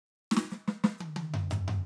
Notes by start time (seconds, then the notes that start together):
0.32 snare
0.37 snare
0.51 snare, hi-hat pedal
0.68 snare
0.84 snare
0.98 hi-hat pedal, high tom
1.17 high tom
1.34 floor tom
1.51 floor tom, hi-hat pedal
1.68 floor tom